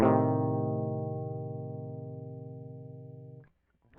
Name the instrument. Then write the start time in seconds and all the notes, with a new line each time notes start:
electric guitar
0.00 A2 C3
0.05 D#3